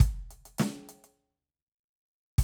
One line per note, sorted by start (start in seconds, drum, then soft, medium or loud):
0.01 kick loud
0.01 closed hi-hat loud
0.32 closed hi-hat medium
0.46 closed hi-hat medium
0.59 snare loud
0.59 closed hi-hat loud
0.90 closed hi-hat medium
1.05 closed hi-hat soft
2.39 closed hi-hat loud
2.39 kick loud